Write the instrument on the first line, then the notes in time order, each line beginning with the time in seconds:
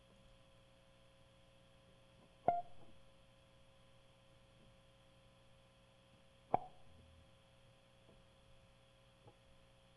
electric guitar
2.49 F5
6.54 G5